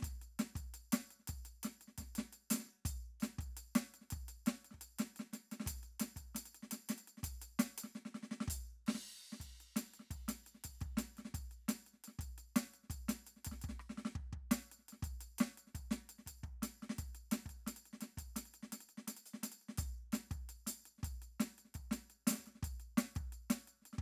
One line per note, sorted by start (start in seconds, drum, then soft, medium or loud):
0.01 kick medium
0.01 snare soft
0.05 percussion medium
0.22 percussion soft
0.39 snare medium
0.39 percussion medium
0.56 kick soft
0.56 percussion medium
0.74 percussion medium
0.93 snare medium
0.93 percussion loud
1.11 percussion soft
1.20 snare soft
1.28 kick soft
1.28 percussion medium
1.46 percussion medium
1.63 snare medium
1.63 percussion medium
1.81 percussion soft
1.88 snare soft
1.98 kick soft
1.98 snare soft
1.98 percussion medium
2.16 snare medium
2.16 percussion medium
2.33 percussion medium
2.51 snare medium
2.51 percussion loud
2.54 snare medium
2.59 snare soft
2.67 snare soft
2.86 kick medium
2.86 percussion medium
3.21 snare medium
3.21 percussion medium
3.24 percussion medium
3.39 kick soft
3.39 percussion soft
3.57 percussion medium
3.76 snare medium
3.76 percussion loud
3.94 percussion soft
4.01 snare soft
4.11 kick soft
4.11 percussion medium
4.29 percussion medium
4.47 snare medium
4.47 percussion medium
4.65 percussion soft
4.71 kick soft
4.71 snare soft
4.81 percussion medium
4.99 snare medium
4.99 percussion medium
5.16 snare soft
5.16 percussion soft
5.33 snare soft
5.33 percussion medium
5.52 snare soft
5.52 percussion medium
5.60 snare soft
5.64 kick soft
5.64 snare soft
5.68 percussion loud
5.83 percussion soft
6.00 snare medium
6.00 percussion loud
6.17 kick soft
6.17 percussion medium
6.35 snare soft
6.35 percussion loud
6.46 percussion medium
6.55 percussion soft
6.63 snare soft
6.71 snare soft
6.71 percussion loud
6.89 snare medium
6.89 percussion medium
6.98 percussion medium
7.08 percussion soft
7.18 snare soft
7.23 kick soft
7.23 percussion loud
7.42 percussion medium
7.59 snare medium
7.59 percussion loud
7.78 percussion loud
7.84 snare soft
7.95 snare soft
8.06 snare soft
8.15 snare soft
8.23 snare soft
8.32 snare soft
8.41 snare medium
8.48 kick medium
8.48 percussion medium
8.87 snare medium
8.87 crash medium
8.95 snare soft
9.33 snare soft
9.40 kick soft
9.40 percussion medium
9.61 percussion soft
9.76 snare medium
9.76 percussion loud
9.94 percussion soft
10.00 snare soft
10.11 kick soft
10.11 percussion medium
10.28 snare medium
10.28 percussion loud
10.47 percussion soft
10.55 snare soft
10.64 kick soft
10.64 percussion medium
10.81 kick soft
10.81 percussion soft
10.97 snare medium
10.97 percussion medium
11.17 snare soft
11.17 percussion soft
11.25 snare soft
11.34 kick soft
11.34 percussion medium
11.51 percussion soft
11.69 snare medium
11.69 percussion loud
11.87 percussion soft
11.94 snare soft
12.04 snare soft
12.04 percussion medium
12.19 kick soft
12.19 percussion medium
12.38 percussion soft
12.56 snare medium
12.56 percussion loud
12.74 percussion soft
12.84 snare soft
12.90 kick soft
12.90 percussion medium
13.09 snare medium
13.09 percussion loud
13.27 percussion medium
13.37 snare soft
13.45 kick soft
13.45 percussion medium
13.52 snare soft
13.62 kick soft
13.62 percussion medium
13.69 snare soft
13.80 cross-stick soft
13.90 snare soft
13.98 snare soft
14.05 snare medium
14.16 kick soft
14.33 kick soft
14.52 snare medium
14.52 percussion loud
14.72 percussion soft
14.79 snare soft
14.89 percussion medium
14.93 snare soft
15.03 kick medium
15.03 percussion medium
15.21 percussion medium
15.39 snare medium
15.39 percussion medium
15.58 percussion soft
15.67 snare soft
15.75 kick soft
15.75 percussion medium
15.91 snare medium
15.91 percussion medium
16.09 percussion medium
16.19 snare soft
16.27 kick soft
16.27 percussion medium
16.44 kick soft
16.44 percussion soft
16.63 snare medium
16.63 percussion loud
16.83 snare soft
16.83 percussion soft
16.90 snare medium
16.99 kick soft
16.99 percussion medium
17.15 percussion soft
17.32 snare medium
17.32 percussion loud
17.46 kick soft
17.46 percussion soft
17.67 snare soft
17.67 percussion medium
17.77 percussion medium
17.86 percussion soft
17.93 snare soft
18.01 snare soft
18.01 percussion medium
18.18 kick soft
18.18 percussion medium
18.36 snare soft
18.36 percussion loud
18.46 percussion soft
18.54 percussion soft
18.63 snare soft
18.73 snare soft
18.73 percussion medium
18.81 percussion soft
18.89 percussion soft
18.98 snare soft
19.08 snare soft
19.08 percussion loud
19.17 percussion medium
19.26 percussion soft
19.34 snare soft
19.43 snare soft
19.43 percussion loud
19.52 percussion medium
19.62 percussion soft
19.69 snare soft
19.78 kick medium
19.78 snare soft
19.78 percussion medium
20.13 snare medium
20.13 percussion medium
20.15 percussion medium
20.31 kick soft
20.31 percussion soft
20.49 percussion medium
20.67 snare soft
20.67 percussion loud
20.86 percussion soft
20.98 snare soft
21.03 kick medium
21.03 percussion medium
21.22 percussion soft
21.40 snare medium
21.40 percussion medium
21.58 percussion soft
21.65 snare soft
21.75 kick soft
21.75 percussion medium
21.92 snare medium
21.92 percussion medium
22.10 percussion soft
22.27 snare medium
22.27 percussion loud
22.31 snare medium
22.34 snare soft
22.38 kick soft
22.38 snare soft
22.46 snare soft
22.46 percussion soft
22.55 snare soft
22.63 kick medium
22.63 snare soft
22.63 percussion medium
22.80 percussion soft
22.98 snare medium
22.98 percussion medium
23.16 kick medium
23.16 percussion soft
23.33 percussion soft
23.50 snare medium
23.50 percussion loud
23.68 percussion soft
23.82 snare soft
23.82 percussion soft
23.93 snare soft
23.99 kick medium